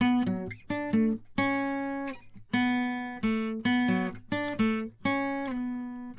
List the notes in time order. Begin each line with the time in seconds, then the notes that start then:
0.01 B3
0.27 F#3
0.71 D4
0.94 A3
1.39 C#4
2.54 B3
3.24 A3
3.66 B3
3.89 F#3
4.33 D4
4.60 A3
5.06 C#4
5.49 B3